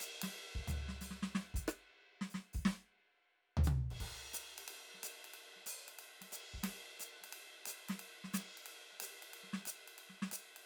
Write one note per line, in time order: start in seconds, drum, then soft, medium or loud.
0.01 hi-hat pedal medium
0.01 ride medium
0.22 snare medium
0.22 ride loud
0.33 ride soft
0.55 kick soft
0.68 floor tom medium
0.68 hi-hat pedal medium
0.78 high tom soft
0.89 snare soft
1.02 snare soft
1.02 hi-hat pedal medium
1.11 snare soft
1.23 snare medium
1.35 snare medium
1.55 open hi-hat medium
1.55 kick soft
1.68 cross-stick medium
1.68 hi-hat pedal medium
2.22 snare medium
2.30 hi-hat pedal soft
2.35 snare medium
2.54 open hi-hat soft
2.54 kick soft
2.66 snare loud
3.58 floor tom loud
3.64 hi-hat pedal medium
3.64 high tom loud
3.69 closed hi-hat soft
3.91 kick soft
3.91 ride medium
4.00 kick soft
4.00 crash medium
4.34 hi-hat pedal loud
4.34 ride medium
4.59 ride medium
4.68 ride loud
4.95 snare soft
5.04 hi-hat pedal loud
5.04 ride loud
5.25 ride medium
5.34 ride medium
5.57 snare soft
5.67 hi-hat pedal loud
5.67 ride medium
5.89 ride medium
5.99 ride medium
6.22 snare soft
6.22 ride medium
6.32 hi-hat pedal medium
6.32 ride medium
6.54 kick soft
6.64 snare medium
6.64 ride loud
7.00 hi-hat pedal medium
7.00 ride medium
7.22 snare soft
7.22 ride medium
7.33 ride medium
7.66 hi-hat pedal loud
7.66 ride loud
7.89 snare medium
7.89 ride medium
8.00 ride medium
8.25 snare soft
8.34 snare medium
8.34 hi-hat pedal loud
8.34 ride medium
8.58 ride medium
8.67 ride medium
8.93 snare soft
9.01 hi-hat pedal medium
9.01 ride loud
9.23 ride medium
9.34 ride medium
9.44 snare soft
9.54 snare medium
9.66 hi-hat pedal loud
9.66 ride medium
9.88 ride medium
9.99 ride medium
10.10 snare soft
10.23 snare medium
10.32 hi-hat pedal loud
10.32 ride medium
10.57 ride medium